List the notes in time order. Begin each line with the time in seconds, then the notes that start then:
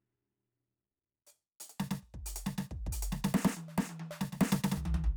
1.27 hi-hat pedal
1.60 closed hi-hat
1.70 closed hi-hat
1.80 snare
1.91 snare
2.03 kick
2.14 kick
2.26 closed hi-hat
2.36 closed hi-hat
2.47 snare
2.58 snare
2.71 kick
2.87 kick
2.93 closed hi-hat
3.03 closed hi-hat
3.12 snare
3.25 snare
3.35 snare
3.45 snare
3.57 high tom
3.69 percussion
3.78 snare
3.90 high tom
4.00 high tom
4.11 percussion
4.21 snare
4.33 snare
4.41 snare
4.52 snare
4.64 snare
4.72 snare
4.77 floor tom
4.86 floor tom
4.95 floor tom
5.04 floor tom